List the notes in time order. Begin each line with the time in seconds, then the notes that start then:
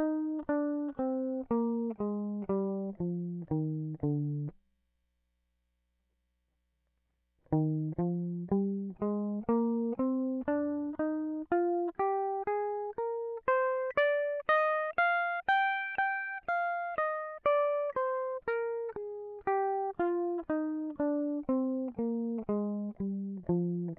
0.00 D#4
0.49 D4
0.99 C4
1.51 A#3
2.01 G#3
2.50 G3
3.01 F3
3.52 D#3
4.05 D3
7.53 D#3
8.00 F3
8.52 G3
9.02 G#3
9.49 A#3
10.00 C4
10.48 D4
10.99 D#4
11.52 F4
12.00 G4
12.47 G#4
12.98 A#4
13.48 C5
13.98 D5
14.49 D#5
14.98 F5
15.49 G5
15.98 G5
16.49 F5
16.98 D#5
17.46 D5
17.96 C5
18.48 A#4
18.96 G#4
19.47 G4
20.00 F4
20.50 D#4
21.00 D4
21.49 C4
21.99 A#3
22.50 G#3
23.01 G3
23.39 F#3
23.50 F3
23.90 E3